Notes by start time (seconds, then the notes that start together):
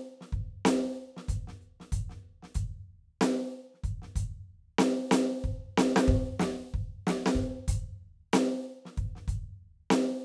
0.01 closed hi-hat
0.21 snare
0.32 kick, closed hi-hat
0.65 closed hi-hat, snare
0.93 cross-stick
0.98 closed hi-hat
1.16 snare
1.28 closed hi-hat, kick
1.47 snare
1.61 closed hi-hat
1.80 snare
1.92 closed hi-hat, kick
2.09 snare
2.15 snare
2.22 closed hi-hat
2.43 snare
2.55 closed hi-hat, kick
3.21 closed hi-hat, snare
3.53 closed hi-hat
3.74 snare
3.84 closed hi-hat, kick
4.02 snare
4.16 closed hi-hat, kick
4.78 snare
5.11 closed hi-hat, snare
5.43 kick, hi-hat pedal
5.78 snare
5.96 snare
6.08 kick
6.39 snare
6.74 kick
7.07 snare
7.26 snare
7.35 kick
7.68 closed hi-hat, kick
8.33 closed hi-hat, snare
8.85 snare
8.97 kick, closed hi-hat
9.15 snare
9.28 closed hi-hat, kick
9.90 closed hi-hat, snare